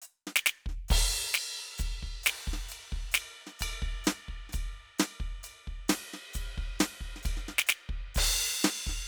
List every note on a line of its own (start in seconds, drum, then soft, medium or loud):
0.02 hi-hat pedal medium
0.27 snare medium
0.36 snare loud
0.46 snare loud
0.66 kick soft
0.66 snare soft
0.88 kick medium
0.88 hi-hat pedal medium
0.88 crash medium
1.33 snare loud
1.33 hi-hat pedal medium
1.33 ride bell medium
1.78 kick medium
1.78 hi-hat pedal medium
1.78 ride bell soft
2.02 kick soft
2.23 snare loud
2.23 hi-hat pedal medium
2.23 crash medium
2.23 ride bell medium
2.47 kick medium
2.53 snare soft
2.68 hi-hat pedal medium
2.68 ride bell medium
2.92 kick soft
3.11 snare loud
3.11 hi-hat pedal medium
3.11 ride bell loud
3.46 snare soft
3.59 kick soft
3.59 hi-hat pedal medium
3.59 ride bell loud
3.82 kick medium
4.04 snare loud
4.04 hi-hat pedal medium
4.04 ride bell medium
4.28 kick soft
4.49 snare soft
4.49 hi-hat pedal medium
4.53 kick medium
4.53 ride bell medium
4.98 snare loud
4.98 hi-hat pedal medium
4.98 ride bell medium
5.20 kick soft
5.43 hi-hat pedal medium
5.43 ride bell medium
5.67 kick soft
5.88 snare loud
5.88 hi-hat pedal medium
5.88 ride loud
6.13 snare soft
6.33 kick soft
6.33 hi-hat pedal medium
6.33 ride medium
6.57 kick medium
6.79 snare loud
6.79 hi-hat pedal medium
6.79 ride loud
7.00 kick soft
7.16 snare soft
7.23 kick medium
7.23 hi-hat pedal medium
7.23 ride bell medium
7.37 snare soft
7.48 snare soft
7.58 snare loud
7.66 snare loud
7.66 hi-hat pedal medium
7.89 kick soft
8.14 kick medium
8.14 hi-hat pedal medium
8.14 crash loud
8.63 snare loud
8.63 hi-hat pedal medium
8.63 ride medium
8.86 kick soft
8.86 snare soft